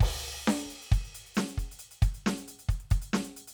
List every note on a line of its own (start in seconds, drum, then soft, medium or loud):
0.01 kick loud
0.01 crash loud
0.48 snare loud
0.59 closed hi-hat medium
0.66 kick soft
0.70 closed hi-hat medium
0.82 closed hi-hat medium
0.92 closed hi-hat medium
0.92 kick loud
1.05 closed hi-hat soft
1.27 closed hi-hat soft
1.35 snare loud
1.35 hi-hat pedal medium
1.49 closed hi-hat medium
1.58 closed hi-hat medium
1.58 kick medium
1.72 closed hi-hat medium
1.79 closed hi-hat medium
1.91 closed hi-hat medium
2.03 closed hi-hat medium
2.03 kick loud
2.15 closed hi-hat medium
2.27 snare loud
2.38 closed hi-hat medium
2.48 closed hi-hat medium
2.59 closed hi-hat medium
2.69 closed hi-hat medium
2.69 kick loud
2.81 closed hi-hat soft
2.91 closed hi-hat medium
2.91 kick loud
3.02 closed hi-hat medium
3.14 snare loud
3.25 closed hi-hat medium
3.37 closed hi-hat medium
3.48 closed hi-hat medium